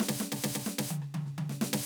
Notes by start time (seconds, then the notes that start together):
0.00 snare
0.08 snare
0.20 snare
0.32 snare
0.44 snare
0.55 snare
0.66 snare
0.78 snare
0.90 high tom
1.02 cross-stick
1.14 high tom
1.26 snare
1.38 high tom
1.49 snare
1.61 snare
1.73 snare